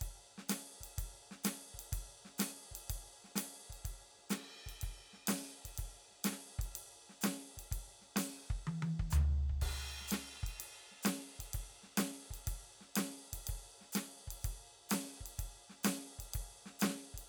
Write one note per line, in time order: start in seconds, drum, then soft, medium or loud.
0.01 kick soft
0.01 ride medium
0.38 snare soft
0.48 snare medium
0.48 hi-hat pedal loud
0.48 ride loud
0.80 kick soft
0.80 ride medium
0.98 kick soft
0.98 ride medium
1.31 snare soft
1.44 snare medium
1.44 hi-hat pedal loud
1.44 ride loud
1.74 kick soft
1.79 ride medium
1.92 kick soft
1.92 ride medium
2.25 snare soft
2.38 snare medium
2.38 hi-hat pedal loud
2.38 ride loud
2.71 kick soft
2.71 ride medium
2.89 kick soft
2.89 ride loud
3.24 snare soft
3.35 snare medium
3.35 hi-hat pedal loud
3.35 ride loud
3.70 kick soft
3.70 ride soft
3.85 kick soft
3.85 ride medium
4.18 snare soft
4.29 snare medium
4.29 hi-hat pedal loud
4.29 ride medium
4.66 kick soft
4.66 ride medium
4.81 kick soft
4.81 ride medium
5.13 snare soft
5.27 snare medium
5.27 hi-hat pedal loud
5.27 ride loud
5.65 kick soft
5.65 ride medium
5.75 kick soft
5.75 hi-hat pedal soft
5.75 ride medium
6.10 snare soft
6.24 snare medium
6.24 hi-hat pedal medium
6.24 ride loud
6.30 snare soft
6.58 kick soft
6.58 ride medium
6.75 ride medium
7.09 snare soft
7.21 snare medium
7.21 hi-hat pedal loud
7.21 ride loud
7.57 kick soft
7.57 ride medium
7.71 kick soft
7.71 ride medium
8.01 snare soft
8.16 snare medium
8.16 hi-hat pedal medium
8.16 ride loud
8.50 kick soft
8.67 high tom medium
8.82 closed hi-hat soft
8.82 high tom medium
8.99 kick soft
9.10 floor tom loud
9.10 hi-hat pedal medium
9.49 kick soft
9.61 kick soft
9.61 crash medium
10.01 snare soft
10.08 hi-hat pedal medium
10.08 ride loud
10.12 snare medium
10.43 kick soft
10.43 ride medium
10.60 ride medium
10.91 snare soft
11.03 snare medium
11.03 hi-hat pedal medium
11.03 ride loud
11.39 kick soft
11.39 ride medium
11.53 kick soft
11.53 ride medium
11.83 snare soft
11.97 snare medium
11.97 hi-hat pedal medium
11.97 ride loud
12.30 kick soft
12.30 ride medium
12.47 kick soft
12.47 ride medium
12.80 snare soft
12.95 snare medium
12.95 hi-hat pedal loud
12.95 ride loud
13.33 kick soft
13.33 ride medium
13.42 hi-hat pedal soft
13.47 kick soft
13.47 ride medium
13.81 snare soft
13.92 snare medium
13.92 hi-hat pedal loud
13.92 ride loud
14.27 kick soft
14.27 ride medium
14.41 kick soft
14.41 hi-hat pedal soft
14.41 ride medium
14.89 snare medium
14.89 hi-hat pedal medium
14.89 ride loud
15.20 kick soft
15.26 ride medium
15.36 kick soft
15.36 hi-hat pedal soft
15.36 ride medium
15.69 snare soft
15.83 snare medium
15.83 hi-hat pedal loud
15.83 ride loud
16.18 kick soft
16.18 ride medium
16.33 kick soft
16.33 ride loud
16.66 snare soft
16.79 snare medium
16.79 hi-hat pedal medium
16.79 ride loud
16.88 snare soft
17.14 kick soft
17.14 ride medium